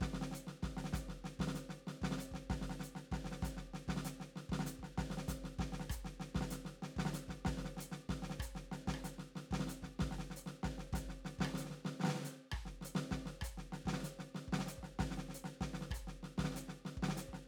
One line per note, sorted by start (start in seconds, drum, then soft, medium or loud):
0.01 kick soft
0.01 snare medium
0.14 snare soft
0.22 snare soft
0.35 hi-hat pedal medium
0.47 snare soft
0.63 kick soft
0.63 snare soft
0.77 snare soft
0.85 snare soft
0.93 kick soft
0.93 snare soft
0.93 hi-hat pedal medium
1.09 snare soft
1.25 snare soft
1.39 kick soft
1.39 snare medium
1.48 snare soft
1.55 snare soft
1.55 hi-hat pedal soft
1.70 snare soft
1.87 snare soft
2.02 kick soft
2.02 snare medium
2.11 snare medium
2.18 snare soft
2.18 hi-hat pedal medium
2.32 kick soft
2.32 snare soft
2.50 kick soft
2.50 snare medium
2.62 snare soft
2.70 snare soft
2.84 hi-hat pedal medium
2.96 snare soft
3.12 kick soft
3.12 snare soft
3.25 snare soft
3.32 snare soft
3.39 kick soft
3.39 snare soft
3.43 snare soft
3.43 hi-hat pedal medium
3.57 snare soft
3.74 snare soft
3.88 kick soft
3.88 snare medium
3.97 snare soft
4.05 snare soft
4.05 hi-hat pedal medium
4.20 snare soft
4.36 snare soft
4.49 kick soft
4.49 snare medium
4.60 snare soft
4.66 snare soft
4.66 hi-hat pedal medium
4.79 kick soft
4.83 snare soft
4.98 kick soft
4.98 snare medium
5.10 snare soft
5.18 snare soft
5.28 kick soft
5.28 snare soft
5.28 hi-hat pedal medium
5.44 snare soft
5.59 kick soft
5.59 snare medium
5.73 snare soft
5.80 snare soft
5.90 kick soft
5.90 cross-stick medium
5.90 hi-hat pedal medium
6.05 snare soft
6.20 snare soft
6.35 kick soft
6.35 snare medium
6.41 snare soft
6.51 snare soft
6.51 hi-hat pedal medium
6.65 snare soft
6.83 snare soft
6.97 kick soft
6.97 snare medium
7.06 snare medium
7.14 snare soft
7.14 hi-hat pedal medium
7.28 kick soft
7.28 snare soft
7.45 kick soft
7.45 snare medium
7.58 snare soft
7.65 snare soft
7.77 snare soft
7.77 hi-hat pedal medium
7.92 snare soft
8.09 kick soft
8.09 snare medium
8.23 snare soft
8.30 snare soft
8.40 kick soft
8.40 cross-stick medium
8.40 hi-hat pedal medium
8.55 snare soft
8.72 snare soft
8.88 kick soft
8.88 snare medium
8.94 kick soft
8.94 cross-stick medium
9.04 snare soft
9.04 hi-hat pedal medium
9.19 snare soft
9.36 snare soft
9.51 kick soft
9.51 snare medium
9.60 snare soft
9.67 snare soft
9.67 hi-hat pedal medium
9.83 kick soft
9.83 snare soft
10.00 kick soft
10.00 snare medium
10.11 snare soft
10.19 snare soft
10.31 snare soft
10.37 hi-hat pedal medium
10.46 snare soft
10.64 kick soft
10.64 snare medium
10.79 snare soft
10.93 kick soft
10.93 snare soft
10.93 hi-hat pedal medium
11.01 kick soft
11.09 snare soft
11.25 snare soft
11.39 kick soft
11.39 snare medium
11.45 cross-stick medium
11.54 snare soft
11.54 hi-hat pedal medium
11.60 snare soft
11.65 snare soft
11.70 snare soft
11.79 snare soft
11.85 snare medium
12.00 snare soft
12.04 snare medium
12.08 snare medium
12.11 snare soft
12.15 snare soft
12.18 snare soft
12.21 snare soft
12.23 snare soft
12.23 hi-hat pedal medium
12.27 snare soft
12.32 snare soft
12.52 kick soft
12.52 cross-stick medium
12.66 snare soft
12.82 snare soft
12.82 hi-hat pedal medium
12.95 snare medium
13.11 kick soft
13.11 snare medium
13.26 snare soft
13.42 kick soft
13.42 cross-stick medium
13.42 hi-hat pedal medium
13.58 snare soft
13.73 snare soft
13.86 kick soft
13.86 snare medium
13.93 snare medium
13.98 snare soft
14.04 snare soft
14.04 hi-hat pedal medium
14.19 snare soft
14.35 snare soft
14.48 kick soft
14.53 snare medium
14.59 snare medium
14.67 snare soft
14.67 hi-hat pedal medium
14.78 kick soft
14.83 snare soft
14.99 kick soft
14.99 snare medium
15.11 snare soft
15.18 snare soft
15.25 snare soft
15.29 snare soft
15.35 hi-hat pedal medium
15.45 snare soft
15.61 kick soft
15.61 snare medium
15.74 snare soft
15.81 snare soft
15.91 kick soft
15.91 cross-stick medium
15.91 hi-hat pedal medium
15.98 kick soft
16.08 snare soft
16.23 snare soft
16.38 kick soft
16.38 snare medium
16.44 snare medium
16.51 snare soft
16.55 snare soft
16.55 hi-hat pedal medium
16.69 snare soft
16.85 snare soft
16.97 kick soft
17.03 snare medium
17.09 snare medium
17.17 snare soft
17.17 hi-hat pedal medium
17.29 kick soft
17.34 snare soft